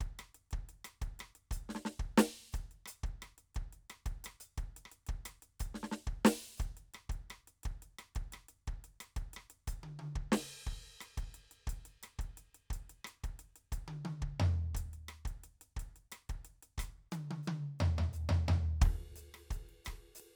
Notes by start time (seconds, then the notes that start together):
0.01 kick, closed hi-hat
0.19 cross-stick, closed hi-hat
0.35 closed hi-hat
0.51 kick, closed hi-hat
0.69 closed hi-hat
0.85 cross-stick, closed hi-hat
1.02 kick, closed hi-hat
1.20 cross-stick, closed hi-hat
1.36 closed hi-hat
1.51 closed hi-hat, kick
1.69 snare
1.75 snare
1.86 snare
2.00 kick
2.18 open hi-hat, snare
2.53 kick, closed hi-hat, hi-hat pedal
2.72 closed hi-hat
2.86 closed hi-hat, cross-stick
3.04 kick, closed hi-hat
3.22 cross-stick, closed hi-hat
3.38 closed hi-hat
3.55 kick, closed hi-hat
3.73 closed hi-hat
3.90 cross-stick, closed hi-hat
4.06 kick, closed hi-hat
4.25 cross-stick, closed hi-hat
4.41 closed hi-hat
4.58 kick, closed hi-hat
4.77 closed hi-hat
4.86 cross-stick
4.92 closed hi-hat
5.07 kick, closed hi-hat
5.26 cross-stick, closed hi-hat
5.43 closed hi-hat
5.60 closed hi-hat, kick
5.75 snare
5.83 snare
5.92 snare
6.07 kick
6.25 open hi-hat, snare
6.58 kick, hi-hat pedal
6.62 closed hi-hat
6.77 closed hi-hat
6.94 cross-stick, closed hi-hat
7.10 kick, closed hi-hat
7.30 cross-stick, closed hi-hat
7.48 closed hi-hat
7.64 kick, closed hi-hat
7.83 closed hi-hat
7.99 cross-stick, closed hi-hat
8.15 kick, closed hi-hat
8.33 cross-stick, closed hi-hat
8.49 closed hi-hat
8.68 kick, closed hi-hat
8.84 closed hi-hat
9.01 cross-stick, closed hi-hat
9.17 kick, closed hi-hat
9.34 cross-stick, closed hi-hat
9.50 closed hi-hat
9.68 closed hi-hat, kick
9.84 high tom
9.99 high tom
10.04 high tom
10.16 kick
10.32 snare, crash
10.67 kick
11.01 cross-stick, closed hi-hat
11.18 kick, closed hi-hat
11.35 closed hi-hat
11.52 closed hi-hat
11.67 kick, closed hi-hat
11.86 closed hi-hat
12.03 cross-stick, closed hi-hat
12.19 kick, closed hi-hat
12.38 closed hi-hat
12.55 closed hi-hat
12.71 kick, closed hi-hat
12.90 closed hi-hat
13.05 cross-stick, closed hi-hat
13.24 kick, closed hi-hat
13.40 closed hi-hat
13.56 closed hi-hat
13.72 kick, closed hi-hat
13.88 high tom
14.05 high tom
14.22 kick
14.40 floor tom
14.75 kick, closed hi-hat
14.94 closed hi-hat
15.09 cross-stick, closed hi-hat
15.25 kick, closed hi-hat
15.44 closed hi-hat
15.62 closed hi-hat
15.77 kick, closed hi-hat
15.96 closed hi-hat
16.12 cross-stick, closed hi-hat
16.30 kick, closed hi-hat
16.45 closed hi-hat
16.63 closed hi-hat
16.78 closed hi-hat, kick, cross-stick
17.12 hi-hat pedal, high tom
17.31 high tom
17.43 hi-hat pedal
17.48 high tom
17.79 floor tom, hi-hat pedal
17.99 floor tom
18.13 hi-hat pedal
18.29 floor tom
18.49 floor tom
18.82 kick, ride
19.16 hi-hat pedal, ride
19.34 cross-stick, ride
19.51 kick, hi-hat pedal, ride
19.69 ride
19.85 kick, cross-stick, hi-hat pedal, ride
20.15 hi-hat pedal
20.20 ride